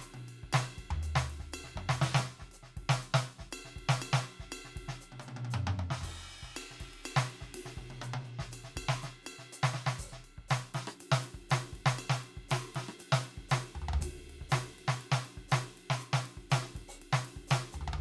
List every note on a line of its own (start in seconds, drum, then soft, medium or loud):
0.01 hi-hat pedal medium
0.01 ride medium
0.14 closed hi-hat soft
0.14 high tom medium
0.29 ride bell medium
0.43 kick soft
0.53 snare loud
0.53 hi-hat pedal medium
0.53 ride bell loud
0.61 snare soft
0.78 kick soft
0.78 ride bell soft
0.91 floor tom loud
1.03 hi-hat pedal medium
1.03 ride bell medium
1.16 snare loud
1.30 ride medium
1.40 kick soft
1.40 snare soft
1.52 hi-hat pedal medium
1.52 ride bell loud
1.64 snare soft
1.76 kick soft
1.76 mid tom medium
1.82 kick soft
1.89 snare loud
2.01 snare loud
2.01 hi-hat pedal medium
2.15 snare loud
2.20 cross-stick medium
2.26 snare soft
2.39 kick soft
2.39 snare soft
2.52 hi-hat pedal medium
2.52 ride bell soft
2.63 snare soft
2.77 kick soft
2.77 ride medium
2.83 kick soft
2.89 snare loud
3.02 hi-hat pedal medium
3.02 ride soft
3.14 snare loud
3.39 kick soft
3.39 snare soft
3.52 hi-hat pedal medium
3.52 ride bell loud
3.65 snare soft
3.76 kick soft
3.76 ride soft
3.89 snare loud
4.00 hi-hat pedal medium
4.00 ride bell loud
4.13 snare loud
4.20 snare soft
4.40 kick soft
4.40 snare soft
4.52 hi-hat pedal medium
4.52 ride bell loud
4.65 snare soft
4.76 kick soft
4.76 ride medium
4.85 kick soft
4.85 snare medium
5.01 hi-hat pedal medium
5.12 high tom medium
5.20 hi-hat pedal medium
5.20 high tom medium
5.28 high tom loud
5.37 high tom loud
5.45 high tom medium
5.51 hi-hat pedal medium
5.51 mid tom loud
5.66 hi-hat pedal soft
5.66 mid tom loud
5.79 mid tom medium
5.91 snare medium
6.01 kick soft
6.01 snare soft
6.01 hi-hat pedal medium
6.01 crash medium
6.09 kick soft
6.43 kick soft
6.43 snare soft
6.56 hi-hat pedal medium
6.56 ride bell loud
6.71 snare soft
6.80 kick soft
6.80 snare soft
6.80 ride medium
6.85 kick soft
6.85 snare soft
6.94 ride medium
7.04 hi-hat pedal medium
7.04 ride bell loud
7.17 snare loud
7.24 snare soft
7.30 ride soft
7.41 kick soft
7.41 snare soft
7.55 hi-hat pedal medium
7.55 ride loud
7.66 snare medium
7.77 kick soft
7.77 high tom medium
7.90 high tom medium
8.02 hi-hat pedal medium
8.02 high tom medium
8.14 high tom loud
8.24 hi-hat pedal soft
8.24 high tom medium
8.39 kick soft
8.39 snare medium
8.49 kick soft
8.49 hi-hat pedal medium
8.49 ride bell medium
8.64 snare soft
8.77 kick medium
8.77 ride bell loud
8.82 kick soft
8.89 snare loud
9.02 snare medium
9.02 hi-hat pedal medium
9.23 hi-hat pedal soft
9.23 ride bell loud
9.39 snare soft
9.53 hi-hat pedal loud
9.53 ride bell medium
9.63 snare loud
9.74 snare medium
9.87 snare loud
9.98 kick soft
9.98 hi-hat pedal loud
9.98 ride bell soft
10.05 kick soft
10.13 snare soft
10.13 hi-hat pedal soft
10.24 ride bell soft
10.38 kick soft
10.48 snare loud
10.48 hi-hat pedal medium
10.48 ride bell medium
10.74 snare medium
10.74 hi-hat pedal medium
10.74 ride medium
10.88 cross-stick medium
11.00 hi-hat pedal medium
11.00 ride medium
11.12 snare loud
11.21 hi-hat pedal medium
11.21 ride medium
11.34 kick soft
11.49 snare loud
11.49 hi-hat pedal medium
11.49 ride loud
11.62 snare soft
11.73 kick soft
11.73 ride soft
11.79 kick soft
11.86 snare loud
11.98 hi-hat pedal medium
11.98 ride bell loud
12.10 snare loud
12.19 hi-hat pedal soft
12.24 ride medium
12.37 kick soft
12.49 snare loud
12.49 hi-hat pedal medium
12.49 ride loud
12.75 snare medium
12.75 ride medium
12.89 cross-stick medium
12.99 hi-hat pedal medium
12.99 ride medium
13.12 snare loud
13.20 hi-hat pedal medium
13.24 ride medium
13.38 kick soft
13.49 snare loud
13.49 hi-hat pedal medium
13.49 ride loud
13.68 hi-hat pedal soft
13.75 floor tom medium
13.82 floor tom medium
13.89 floor tom loud
13.94 floor tom loud
14.01 kick medium
14.01 hi-hat pedal loud
14.01 ride loud
14.08 kick soft
14.30 ride medium
14.41 kick soft
14.49 snare loud
14.49 hi-hat pedal loud
14.49 ride loud
14.79 ride medium
14.88 snare loud
14.95 hi-hat pedal soft
15.01 ride medium
15.12 snare loud
15.20 snare soft
15.25 ride medium
15.37 kick soft
15.44 kick soft
15.49 snare loud
15.49 hi-hat pedal medium
15.49 ride loud
15.70 hi-hat pedal soft
15.78 ride medium
15.90 snare loud
16.00 hi-hat pedal medium
16.00 ride medium
16.13 snare loud
16.22 hi-hat pedal soft
16.22 ride medium
16.37 kick soft
16.50 snare loud
16.50 hi-hat pedal medium
16.50 ride loud
16.62 snare soft
16.75 kick soft
16.75 ride medium
16.81 kick soft
16.88 open hi-hat medium
16.93 hi-hat pedal soft
17.02 ride medium
17.13 snare loud
17.25 ride medium
17.36 kick soft
17.42 kick soft
17.48 snare loud
17.48 hi-hat pedal loud
17.48 ride loud
17.73 floor tom medium
17.73 hi-hat pedal medium
17.81 floor tom medium
17.88 floor tom loud
17.93 floor tom loud